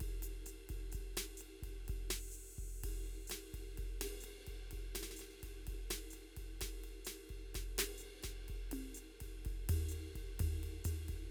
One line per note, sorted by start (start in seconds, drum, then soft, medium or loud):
0.01 kick soft
0.01 ride medium
0.23 closed hi-hat medium
0.23 ride soft
0.46 hi-hat pedal medium
0.46 ride soft
0.70 kick soft
0.70 ride soft
0.76 kick soft
0.92 kick soft
0.92 hi-hat pedal medium
0.92 ride soft
1.00 kick soft
1.17 snare medium
1.17 ride medium
1.38 hi-hat pedal medium
1.38 ride soft
1.63 kick soft
1.63 ride soft
1.68 kick soft
1.86 hi-hat pedal soft
1.86 ride soft
1.90 kick soft
2.11 snare medium
2.11 crash medium
2.32 hi-hat pedal medium
2.59 kick soft
2.64 kick soft
2.81 kick soft
2.81 hi-hat pedal soft
2.81 ride medium
2.90 kick soft
3.07 ride soft
3.28 snare medium
3.28 hi-hat pedal medium
3.28 ride medium
3.54 kick soft
3.54 ride soft
3.78 kick soft
3.78 ride soft
3.84 kick soft
4.02 snare soft
4.02 ride medium
4.21 hi-hat pedal medium
4.21 ride soft
4.47 kick soft
4.47 ride soft
4.71 kick soft
4.71 ride soft
4.79 kick soft
4.95 snare medium
4.95 ride medium
5.03 snare soft
5.11 snare soft
5.17 hi-hat pedal medium
5.17 ride soft
5.22 snare soft
5.31 snare soft
5.39 snare soft
5.44 kick soft
5.44 snare soft
5.44 ride soft
5.52 snare soft
5.57 snare soft
5.62 snare soft
5.65 kick soft
5.65 snare soft
5.65 ride soft
5.74 kick soft
5.91 snare medium
5.91 ride medium
6.11 hi-hat pedal medium
6.11 ride soft
6.37 kick soft
6.37 ride soft
6.61 kick soft
6.61 snare medium
6.61 ride medium
6.67 kick soft
6.84 ride soft
7.05 snare medium
7.05 hi-hat pedal medium
7.05 ride medium
7.30 kick soft
7.30 ride soft
7.55 kick soft
7.55 snare soft
7.55 ride soft
7.61 kick soft
7.79 snare medium
7.79 ride medium
7.98 hi-hat pedal medium
7.98 ride soft
8.23 kick soft
8.23 snare soft
8.23 ride soft
8.30 kick soft
8.49 kick soft
8.49 ride soft
8.55 kick soft
8.72 high tom medium
8.72 ride medium
8.95 hi-hat pedal medium
8.95 ride soft
9.21 kick soft
9.21 ride soft
9.27 kick soft
9.45 kick soft
9.45 ride soft
9.52 kick soft
9.69 floor tom medium
9.69 ride medium
9.89 hi-hat pedal medium
9.89 ride soft
10.16 kick soft
10.16 ride soft
10.21 kick soft
10.40 kick soft
10.40 floor tom medium
10.40 ride medium
10.48 kick soft
10.64 ride soft
10.85 floor tom medium
10.85 hi-hat pedal medium
10.85 ride medium
11.09 kick soft
11.09 ride soft
11.15 kick soft